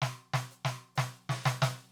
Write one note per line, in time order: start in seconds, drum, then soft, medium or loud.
0.02 snare loud
0.34 snare loud
0.51 hi-hat pedal medium
0.65 snare loud
0.95 snare loud
0.95 hi-hat pedal medium
1.16 hi-hat pedal soft
1.29 snare loud
1.44 snare loud
1.44 hi-hat pedal medium
1.62 snare loud